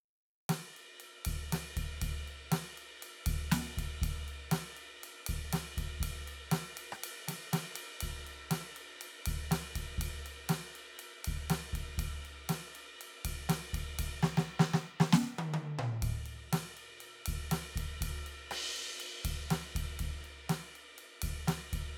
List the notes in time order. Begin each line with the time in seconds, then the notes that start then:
0.49 snare, ride
0.76 ride
1.00 ride
1.25 kick, ride
1.52 snare, ride
1.77 kick, ride
2.01 kick, ride
2.27 ride
2.52 snare, ride
2.77 ride
3.02 ride
3.26 kick, ride
3.51 snare, ride
3.77 kick, ride
4.02 kick, ride
4.28 ride
4.51 snare, ride
4.77 ride
5.03 ride
5.26 kick, ride
5.53 snare, ride
5.77 kick, ride
6.00 kick, ride
6.27 ride
6.51 snare, ride
6.77 ride
6.92 cross-stick
7.03 ride
7.28 snare, ride
7.53 snare, ride
7.75 ride
8.00 kick, ride
8.27 ride
8.51 snare, ride
8.76 ride
9.01 ride
9.26 kick, ride
9.51 snare, ride
9.75 kick, ride
9.98 kick, ride
10.26 ride
10.49 snare, ride
10.75 ride
10.99 ride
11.24 kick, ride
11.50 snare, ride
11.73 kick, ride
11.98 kick, ride
12.25 ride
12.49 snare, ride
12.75 ride
13.01 ride
13.25 kick, ride
13.49 snare, ride
13.73 kick, ride
13.99 kick, ride
14.22 snare
14.37 snare
14.59 snare
14.73 snare
15.00 snare
15.12 snare
15.38 high tom
15.54 high tom
15.79 mid tom
16.02 kick, ride
16.26 ride
16.52 snare, ride
16.77 ride
17.00 ride
17.26 kick, ride
17.51 snare, ride
17.76 kick, ride
18.01 kick, ride
18.26 ride
18.51 cross-stick, ride
18.76 ride
19.00 ride
19.25 kick, ride
19.50 snare, ride
19.75 kick, ride
19.99 kick, ride
20.24 ride
20.49 snare, ride
20.75 ride
20.98 ride
21.22 kick, ride
21.47 snare, ride
21.73 kick, ride